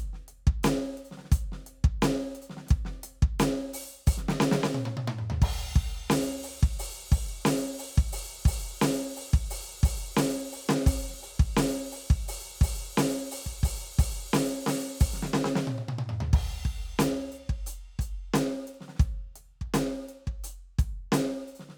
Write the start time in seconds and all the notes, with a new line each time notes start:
0.13 snare
0.28 closed hi-hat
0.47 kick
0.63 closed hi-hat, snare
0.97 closed hi-hat
1.04 closed hi-hat
1.11 snare
1.17 snare
1.24 snare
1.32 closed hi-hat, kick
1.52 snare
1.66 closed hi-hat
1.84 kick, snare
2.02 closed hi-hat, snare
2.35 closed hi-hat
2.42 closed hi-hat
2.50 snare
2.57 snare
2.66 snare, closed hi-hat
2.70 kick
2.85 snare
3.03 closed hi-hat
3.22 kick
3.39 closed hi-hat, snare
3.73 open hi-hat
4.07 open hi-hat, kick
4.14 snare, hi-hat pedal
4.28 snare
4.40 snare
4.51 snare
4.63 snare
4.74 high tom
4.85 high tom
4.97 high tom
5.08 high tom
5.18 mid tom
5.30 floor tom
5.42 kick, crash
5.76 kick
6.10 open hi-hat, snare
6.43 open hi-hat
6.62 kick
6.79 open hi-hat
7.12 open hi-hat, kick
7.45 open hi-hat, snare
7.79 open hi-hat
7.97 kick
8.12 open hi-hat
8.45 open hi-hat, kick
8.81 open hi-hat, snare
9.16 open hi-hat
9.33 kick
9.50 open hi-hat
9.83 open hi-hat, kick
10.17 open hi-hat, snare
10.52 open hi-hat
10.69 snare
10.86 open hi-hat, kick
11.09 snare
11.13 snare
11.22 open hi-hat
11.39 kick
11.57 open hi-hat, snare
11.92 open hi-hat
12.10 kick
12.28 open hi-hat
12.61 open hi-hat, kick
12.97 open hi-hat, snare
13.31 open hi-hat
13.46 kick
13.63 open hi-hat, kick
13.99 open hi-hat, kick
14.33 open hi-hat, snare
14.66 open hi-hat, snare
15.00 open hi-hat, kick
15.13 snare
15.22 snare
15.33 snare
15.44 snare
15.55 snare
15.67 high tom
15.78 high tom
15.88 high tom
16.09 mid tom
16.20 floor tom
16.33 kick, crash
16.65 kick
16.75 kick
16.99 closed hi-hat, snare
17.32 open hi-hat
17.49 kick
17.66 closed hi-hat
17.99 closed hi-hat, kick
18.34 closed hi-hat, snare
18.67 closed hi-hat
18.74 closed hi-hat
18.81 snare
18.88 snare
18.95 snare
18.99 kick, closed hi-hat
19.36 closed hi-hat
19.61 kick
19.74 closed hi-hat, snare
20.09 closed hi-hat
20.27 kick
20.44 closed hi-hat
20.79 kick, closed hi-hat
21.12 closed hi-hat, snare
21.47 closed hi-hat
21.55 closed hi-hat
21.59 snare
21.69 snare